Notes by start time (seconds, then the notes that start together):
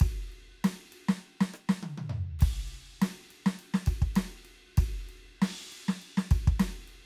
0.01 kick, ride
0.32 ride
0.65 snare, ride
0.93 ride
1.09 snare
1.41 snare
1.54 cross-stick
1.69 snare
1.83 high tom
1.98 high tom
2.10 mid tom
2.40 kick, crash, ride
2.68 ride
3.02 snare, ride
3.31 ride
3.46 snare
3.59 ride
3.74 snare
3.87 kick, ride
4.02 kick
4.16 snare, ride
4.45 ride
4.78 kick, ride
5.09 ride
5.42 snare, ride
5.73 ride
5.89 snare
6.02 ride
6.18 snare
6.31 kick, ride
6.48 kick
6.60 snare, ride
6.88 ride